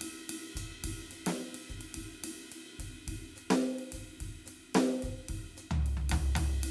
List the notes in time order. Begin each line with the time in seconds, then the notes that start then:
0.01 hi-hat pedal, ride
0.29 ride
0.55 kick, hi-hat pedal, ride bell
0.61 kick
0.84 kick, ride
0.92 kick
1.11 hi-hat pedal, ride
1.26 snare, ride
1.54 ride
1.69 kick, hi-hat pedal
1.81 ride
1.94 kick, ride
2.22 snare, hi-hat pedal, ride
2.52 ride
2.79 kick, hi-hat pedal, ride
3.07 kick, ride
3.15 kick
3.36 hi-hat pedal, ride
3.50 snare, ride
3.78 ride
3.92 kick, hi-hat pedal, ride
4.20 kick, ride
4.46 hi-hat pedal, ride
4.75 snare, ride
5.02 kick, hi-hat pedal, ride
5.09 kick
5.12 kick
5.28 kick, ride
5.57 hi-hat pedal, ride bell
5.71 floor tom
5.86 ride
5.97 floor tom
6.09 kick, hi-hat pedal, ride, floor tom
6.35 ride, floor tom
6.44 floor tom
6.63 hi-hat pedal, ride